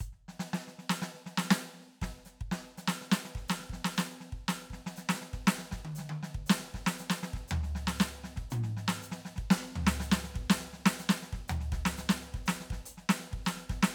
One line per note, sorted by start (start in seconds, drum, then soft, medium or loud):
0.00 closed hi-hat medium
0.00 kick soft
0.12 snare soft
0.28 snare soft
0.39 snare medium
0.53 snare medium
0.67 snare soft
0.78 snare soft
0.89 snare loud
0.98 snare soft
1.02 snare medium
1.14 snare soft
1.26 snare soft
1.37 snare loud
1.44 snare soft
1.51 snare loud
1.56 cross-stick soft
1.90 snare soft
2.01 kick soft
2.01 snare medium
2.18 snare soft
2.25 snare soft
2.25 hi-hat pedal medium
2.39 kick soft
2.39 snare soft
2.51 snare medium
2.63 snare soft
2.77 snare soft
2.77 hi-hat pedal medium
2.88 snare loud
3.01 snare soft
3.11 snare loud
3.16 cross-stick medium
3.25 snare soft
3.35 kick soft
3.35 snare soft
3.48 snare loud
3.48 hi-hat pedal medium
3.60 snare soft
3.69 kick soft
3.69 snare soft
3.84 snare medium
3.96 snare loud
3.96 hi-hat pedal medium
4.20 snare soft
4.32 kick soft
4.32 snare soft
4.48 snare loud
4.48 hi-hat pedal medium
4.60 snare soft
4.65 snare soft
4.70 kick soft
4.70 snare soft
4.86 snare medium
4.96 snare soft
4.96 hi-hat pedal medium
5.09 snare loud
5.14 snare soft
5.21 snare soft
5.33 kick soft
5.33 snare soft
5.47 snare loud
5.47 hi-hat pedal medium
5.58 snare soft
5.71 kick soft
5.71 snare medium
5.85 high tom medium
5.95 snare soft
5.95 hi-hat pedal medium
6.09 high tom medium
6.23 snare medium
6.34 kick soft
6.46 snare loud
6.46 hi-hat pedal medium
6.59 snare soft
6.74 kick soft
6.74 snare soft
6.86 snare loud
6.98 snare soft
6.98 hi-hat pedal medium
7.10 snare loud
7.23 snare medium
7.33 kick soft
7.33 snare soft
7.48 hi-hat pedal medium
7.48 floor tom loud
7.63 snare soft
7.75 snare soft
7.87 snare medium
7.99 snare loud
7.99 hi-hat pedal medium
8.15 snare soft
8.24 snare soft
8.36 kick soft
8.36 snare soft
8.50 hi-hat pedal medium
8.50 mid tom loud
8.63 snare soft
8.77 snare soft
8.88 snare loud
8.99 snare soft
8.99 hi-hat pedal medium
9.11 snare medium
9.25 snare soft
9.25 hi-hat pedal soft
9.36 kick soft
9.36 snare soft
9.50 snare loud
9.50 hi-hat pedal medium
9.62 snare soft
9.76 floor tom loud
9.87 snare loud
10.00 snare medium
10.00 hi-hat pedal medium
10.11 snare loud
10.16 snare soft
10.24 snare soft
10.36 kick soft
10.50 snare loud
10.50 hi-hat pedal medium
10.60 snare soft
10.73 snare soft
10.86 snare loud
10.99 snare soft
10.99 hi-hat pedal medium
11.09 snare loud
11.13 cross-stick medium
11.22 snare soft
11.32 kick soft
11.32 snare soft
11.48 hi-hat pedal medium
11.48 floor tom loud
11.60 snare soft
11.72 kick soft
11.72 snare soft
11.78 kick soft
11.85 snare loud
11.97 snare medium
11.97 hi-hat pedal medium
12.09 snare loud
12.16 snare soft
12.21 snare soft
12.34 kick soft
12.34 snare soft
12.46 snare loud
12.46 hi-hat pedal medium
12.60 snare soft
12.70 kick soft
12.70 snare soft
12.86 closed hi-hat loud
12.97 snare soft
13.09 snare loud
13.19 snare soft
13.31 kick soft
13.31 snare soft
13.45 snare loud
13.45 hi-hat pedal soft
13.56 snare soft
13.69 kick soft
13.69 snare soft
13.83 snare loud